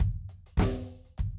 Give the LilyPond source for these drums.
\new DrumStaff \drummode { \time 4/4 \tempo 4 = 100 <bd hh>8 hh16 hh16 <bd sn>8 hh16 hh16 <hh bd>4 r4 | }